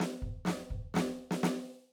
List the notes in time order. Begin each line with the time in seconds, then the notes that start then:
0.00 snare
0.22 kick
0.45 snare
0.47 snare
0.70 kick
0.94 snare
0.97 snare
1.31 snare
1.43 snare